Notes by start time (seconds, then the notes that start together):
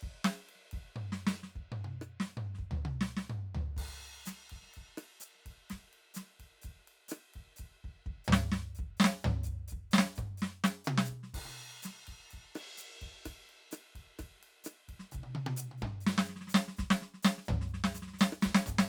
0.01 kick, ride
0.24 snare, ride
0.49 ride
0.55 snare
0.60 snare
0.71 kick, ride
0.96 mid tom
1.12 snare
1.27 snare
1.43 snare
1.55 kick
1.61 kick
1.72 mid tom
1.84 high tom
2.01 cross-stick
2.20 snare
2.37 mid tom
2.54 kick, snare
2.71 floor tom
2.85 high tom
3.01 snare
3.17 snare
3.30 mid tom
3.55 floor tom
3.76 kick, crash
3.83 kick
4.25 snare, hi-hat pedal, ride
4.50 kick, ride
4.57 kick
4.62 snare
4.66 snare
4.69 snare, hi-hat pedal
4.74 kick, ride
4.82 kick
4.97 cross-stick, ride
5.20 hi-hat pedal, ride
5.34 snare
5.46 kick, ride
5.51 kick
5.69 kick, snare, hi-hat pedal, ride
5.77 kick
5.93 ride
6.14 snare, hi-hat pedal, ride
6.39 kick, ride
6.61 kick, hi-hat pedal, ride
6.70 kick
6.78 snare
6.87 ride
7.08 cross-stick, hi-hat pedal, ride
7.34 kick, ride
7.41 kick
7.56 kick, hi-hat pedal, ride
7.64 kick
7.84 kick
7.89 kick
8.06 kick
8.14 kick
8.24 hi-hat pedal, floor tom
8.32 snare
8.52 snare
8.75 hi-hat pedal
8.79 kick
8.86 kick
8.88 kick
8.97 snare, hi-hat pedal
9.04 snare
9.13 snare
9.20 hi-hat pedal
9.24 kick, floor tom
9.43 kick, hi-hat pedal
9.52 kick
9.68 hi-hat pedal
9.72 kick
9.79 kick
9.91 snare, hi-hat pedal
9.98 snare
10.06 snare
10.15 kick, hi-hat pedal, mid tom
10.24 kick
10.37 hi-hat pedal
10.42 snare
10.64 snare, hi-hat pedal
10.79 snare
10.84 hi-hat pedal, high tom
10.98 snare
11.05 hi-hat pedal
11.09 kick
11.23 snare
11.34 kick, cross-stick, hi-hat pedal, crash
11.40 kick
11.45 high tom
11.82 snare, hi-hat pedal, ride
12.07 kick, ride
12.13 kick
12.30 kick, hi-hat pedal, ride
12.38 kick
12.55 cross-stick, ride
12.77 hi-hat pedal, ride
13.01 kick, ride
13.07 kick
13.25 kick, cross-stick, hi-hat pedal, ride
13.44 snare
13.49 ride
13.71 cross-stick, hi-hat pedal, ride
13.95 kick, ride
14.00 kick
14.18 kick, cross-stick, hi-hat pedal, ride
14.25 kick
14.39 snare, ride
14.64 cross-stick, hi-hat pedal, ride
14.88 kick, ride
14.94 kick
14.99 snare
15.11 kick, hi-hat pedal, high tom
15.20 kick, high tom
15.35 high tom
15.46 high tom
15.56 hi-hat pedal, high tom
15.71 high tom
15.78 kick, hi-hat pedal
15.82 mid tom
16.00 hi-hat pedal
16.06 snare
16.18 snare
16.24 hi-hat pedal
16.29 snare
16.36 snare
16.41 snare
16.47 snare, hi-hat pedal
16.54 snare
16.68 snare
16.77 kick, snare, hi-hat pedal
16.89 kick, snare
17.02 snare
17.14 snare
17.23 snare, hi-hat pedal
17.38 snare
17.45 kick, hi-hat pedal, floor tom
17.61 snare
17.68 hi-hat pedal
17.74 snare
17.84 snare
17.94 snare, hi-hat pedal
18.02 snare
18.07 snare
18.14 snare
18.19 snare, hi-hat pedal
18.32 cross-stick
18.42 kick, snare, hi-hat pedal
18.51 kick, snare
18.66 kick, hi-hat pedal, mid tom
18.75 kick, snare
18.84 cross-stick